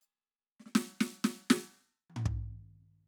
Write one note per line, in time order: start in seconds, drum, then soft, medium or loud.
0.01 percussion soft
0.60 snare soft
0.66 snare soft
0.75 snare loud
1.01 snare medium
1.24 snare loud
1.50 snare loud
2.10 high tom soft
2.16 floor tom loud
2.26 kick medium